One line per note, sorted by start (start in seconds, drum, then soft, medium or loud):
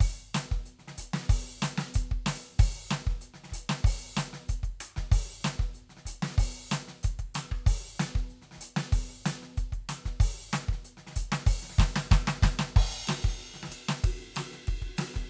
0.01 open hi-hat loud
0.01 kick loud
0.34 closed hi-hat loud
0.34 snare loud
0.34 hi-hat pedal medium
0.52 kick medium
0.52 snare soft
0.66 closed hi-hat medium
0.79 snare soft
0.88 snare medium
0.92 snare soft
0.98 closed hi-hat loud
0.98 kick soft
1.14 snare loud
1.21 snare soft
1.30 open hi-hat loud
1.30 kick loud
1.62 closed hi-hat loud
1.62 snare loud
1.62 hi-hat pedal medium
1.78 snare loud
1.95 closed hi-hat loud
1.95 kick medium
2.12 kick medium
2.27 open hi-hat loud
2.27 kick soft
2.27 snare loud
2.59 open hi-hat loud
2.59 kick loud
2.91 snare loud
2.91 hi-hat pedal medium
3.07 kick medium
3.07 snare soft
3.22 closed hi-hat medium
3.34 snare soft
3.44 snare medium
3.49 kick soft
3.49 snare soft
3.54 closed hi-hat loud
3.70 snare loud
3.85 open hi-hat loud
3.85 kick loud
4.17 closed hi-hat loud
4.17 kick soft
4.17 snare loud
4.17 hi-hat pedal medium
4.34 snare medium
4.49 closed hi-hat medium
4.49 kick medium
4.64 kick medium
4.64 closed hi-hat medium
4.81 closed hi-hat loud
4.81 cross-stick medium
4.97 kick medium
4.97 snare medium
5.12 open hi-hat loud
5.12 kick loud
5.43 open hi-hat loud
5.43 kick soft
5.43 snare loud
5.43 hi-hat pedal medium
5.60 kick medium
5.60 snare soft
5.74 closed hi-hat medium
5.74 hi-hat pedal soft
5.82 kick soft
5.90 snare soft
5.97 snare soft
6.06 closed hi-hat loud
6.06 kick soft
6.06 snare soft
6.23 snare loud
6.30 snare medium
6.38 open hi-hat loud
6.38 kick loud
6.56 open hi-hat soft
6.72 closed hi-hat loud
6.72 snare loud
6.72 hi-hat pedal medium
6.88 snare medium
7.04 closed hi-hat loud
7.04 kick medium
7.20 kick soft
7.20 closed hi-hat medium
7.35 closed hi-hat loud
7.35 snare loud
7.52 kick medium
7.52 cross-stick medium
7.67 open hi-hat loud
7.67 kick loud
8.00 open hi-hat loud
8.00 snare loud
8.00 hi-hat pedal soft
8.16 kick medium
8.16 snare soft
8.30 closed hi-hat soft
8.42 snare soft
8.52 snare soft
8.55 snare soft
8.57 kick soft
8.57 snare soft
8.59 closed hi-hat loud
8.59 snare soft
8.77 snare loud
8.93 open hi-hat loud
8.93 kick loud
9.09 open hi-hat soft
9.25 closed hi-hat loud
9.25 snare loud
9.25 hi-hat pedal medium
9.43 snare soft
9.58 closed hi-hat medium
9.58 kick medium
9.73 kick medium
9.73 closed hi-hat soft
9.89 closed hi-hat loud
9.89 snare medium
10.06 kick medium
10.06 snare medium
10.21 open hi-hat loud
10.21 kick loud
10.53 open hi-hat loud
10.53 snare loud
10.53 hi-hat pedal medium
10.69 kick medium
10.69 snare soft
10.85 closed hi-hat medium
10.98 snare soft
11.07 snare medium
11.11 snare soft
11.16 closed hi-hat loud
11.16 kick medium
11.32 snare loud
11.47 open hi-hat loud
11.47 kick loud
11.63 snare soft
11.70 snare soft
11.73 snare soft
11.77 kick loud
11.77 snare soft
11.80 snare loud
11.96 snare loud
12.12 kick loud
12.12 snare loud
12.12 hi-hat pedal medium
12.28 snare loud
12.43 kick loud
12.43 snare loud
12.59 snare loud
12.77 kick loud
12.77 crash loud
13.08 snare loud
13.08 hi-hat pedal medium
13.08 ride loud
13.25 kick medium
13.25 snare soft
13.39 hi-hat pedal medium
13.39 ride soft
13.54 snare medium
13.63 snare medium
13.67 kick soft
13.67 snare soft
13.67 hi-hat pedal medium
13.72 ride bell medium
13.89 snare loud
14.04 kick medium
14.04 ride loud
14.19 ride medium
14.35 snare loud
14.35 hi-hat pedal medium
14.35 ride loud
14.53 snare soft
14.68 kick medium
14.68 ride medium
14.82 kick soft
14.82 ride soft
14.97 snare loud
14.97 hi-hat pedal medium
14.97 ride loud
15.14 kick medium
15.14 snare medium